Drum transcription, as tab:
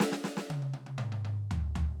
SD |oooo------------|
T1 |----oooo--------|
T2 |--------ooo-----|
FT |------------o-o-|